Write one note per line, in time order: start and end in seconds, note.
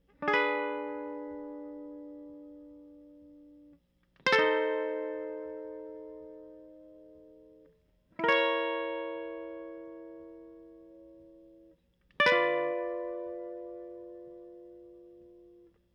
0.23 3.78 D4
0.28 2.72 G#4
0.34 3.34 B4
4.20 4.27 D#5
4.27 7.71 C5
4.33 7.49 A4
4.39 7.71 D#4
8.19 11.76 E4
8.24 11.75 A#4
8.29 11.76 C#5
12.21 15.08 D5
12.27 15.69 B4
12.32 15.74 F4